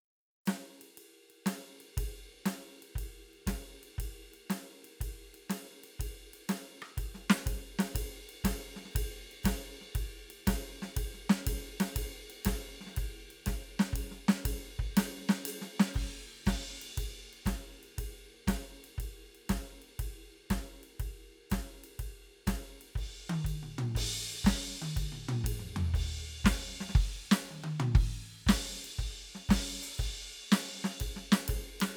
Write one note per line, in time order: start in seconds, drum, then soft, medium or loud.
0.46 snare loud
0.46 hi-hat pedal medium
0.46 ride medium
0.81 ride medium
0.98 ride medium
1.30 ride soft
1.46 snare loud
1.46 hi-hat pedal medium
1.46 ride loud
1.81 ride soft
1.97 kick medium
1.97 ride loud
2.46 snare medium
2.46 hi-hat pedal medium
2.46 ride medium
2.83 ride soft
2.96 kick soft
2.96 ride medium
3.33 ride soft
3.47 kick medium
3.47 snare medium
3.47 hi-hat pedal medium
3.47 ride loud
3.83 ride soft
3.98 kick soft
3.98 ride medium
4.34 ride soft
4.50 snare medium
4.50 hi-hat pedal medium
4.50 ride medium
4.85 ride soft
5.01 kick soft
5.01 ride medium
5.34 ride soft
5.50 snare medium
5.50 hi-hat pedal medium
5.50 ride loud
5.84 ride medium
6.00 kick soft
6.00 ride medium
6.34 ride medium
6.49 snare medium
6.49 hi-hat pedal medium
6.49 ride loud
6.82 cross-stick medium
6.97 kick medium
6.97 ride medium
7.15 snare soft
7.30 snare loud
7.46 kick medium
7.46 ride loud
7.79 snare loud
7.79 ride medium
7.95 kick medium
7.95 ride loud
8.29 ride medium
8.44 kick medium
8.44 snare loud
8.44 hi-hat pedal soft
8.44 ride loud
8.76 snare soft
8.85 snare soft
8.91 hi-hat pedal soft
8.95 kick medium
8.95 snare soft
8.95 ride loud
9.31 ride soft
9.43 kick medium
9.43 snare loud
9.43 hi-hat pedal medium
9.43 ride loud
9.81 snare soft
9.95 kick medium
9.95 ride medium
10.30 ride medium
10.47 kick medium
10.47 snare loud
10.47 hi-hat pedal medium
10.47 ride loud
10.82 snare medium
10.94 kick medium
10.94 hi-hat pedal soft
10.94 ride loud
11.14 snare soft
11.30 snare loud
11.47 kick medium
11.47 hi-hat pedal soft
11.47 ride loud
11.80 snare loud
11.80 ride loud
11.96 kick medium
11.96 ride loud
12.30 ride medium
12.45 kick medium
12.45 snare medium
12.45 hi-hat pedal medium
12.45 ride loud
12.81 snare soft
12.87 snare soft
12.95 kick medium
12.95 snare soft
12.95 ride medium
13.31 ride soft
13.46 kick medium
13.46 snare medium
13.46 hi-hat pedal medium
13.46 ride loud
13.79 snare loud
13.93 kick medium
13.93 ride loud
14.11 snare soft
14.28 snare loud
14.45 kick medium
14.45 ride loud
14.79 kick medium
14.97 snare loud
14.97 ride loud
15.29 snare loud
15.46 hi-hat pedal loud
15.46 ride loud
15.62 snare medium
15.80 snare loud
15.94 kick medium
15.94 crash medium
16.46 kick medium
16.46 snare loud
16.46 hi-hat pedal soft
16.46 ride medium
16.82 ride medium
16.98 kick medium
16.98 ride medium
17.33 ride soft
17.46 kick medium
17.46 snare medium
17.46 hi-hat pedal medium
17.46 ride medium
17.83 ride soft
17.98 kick soft
17.98 ride medium
18.47 kick medium
18.47 snare loud
18.47 hi-hat pedal medium
18.47 ride loud
18.84 ride soft
18.98 kick soft
18.98 ride medium
19.35 ride soft
19.49 kick medium
19.49 snare medium
19.49 hi-hat pedal soft
19.49 ride medium
19.82 ride soft
19.99 kick medium
19.99 ride medium
20.50 kick medium
20.50 snare medium
20.50 hi-hat pedal soft
20.50 ride medium
20.83 ride soft
21.00 kick medium
21.00 ride medium
21.50 kick medium
21.50 snare medium
21.50 hi-hat pedal medium
21.50 ride medium
21.84 ride medium
21.99 kick soft
21.99 ride medium
22.47 kick medium
22.47 snare medium
22.47 hi-hat pedal medium
22.47 ride loud
22.81 ride soft
22.93 kick medium
22.93 hi-hat pedal soft
22.98 ride medium
23.30 high tom loud
23.45 kick medium
23.45 hi-hat pedal soft
23.45 ride medium
23.63 mid tom medium
23.78 mid tom loud
23.95 kick medium
23.95 ride loud
24.44 kick medium
24.44 snare loud
24.44 hi-hat pedal medium
24.44 ride medium
24.82 high tom loud
24.96 kick medium
24.96 ride medium
25.12 mid tom medium
25.29 mid tom loud
25.44 kick medium
25.44 hi-hat pedal soft
25.44 ride loud
25.60 floor tom medium
25.76 floor tom loud
25.94 kick medium
25.94 ride medium
26.45 kick medium
26.45 snare loud
26.45 ride medium
26.81 snare medium
26.89 snare soft
26.95 kick loud
26.95 crash medium
27.31 snare loud
27.51 high tom medium
27.64 high tom loud
27.80 mid tom loud
27.95 kick loud
27.95 crash medium
28.14 closed hi-hat soft
28.47 kick medium
28.47 snare loud
28.47 ride loud
28.85 ride medium
28.99 kick medium
28.99 ride medium
29.35 snare soft
29.48 kick medium
29.48 snare loud
29.48 hi-hat pedal soft
29.48 ride loud
29.82 open hi-hat medium
29.98 kick medium
29.98 hi-hat pedal medium
29.98 ride medium
30.44 hi-hat pedal soft
30.52 snare loud
30.52 ride medium
30.84 snare medium
31.00 kick medium
31.00 ride medium
31.16 snare soft
31.32 snare loud
31.48 kick medium
31.48 ride loud
31.81 snare loud
31.81 ride loud